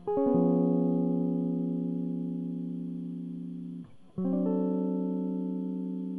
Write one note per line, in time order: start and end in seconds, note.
0.08 2.94 G#4
0.18 3.82 C#4
0.27 3.90 B3
0.35 3.88 F3
4.19 6.19 F#3
4.25 6.19 C4
4.33 6.19 D4
4.46 6.19 A4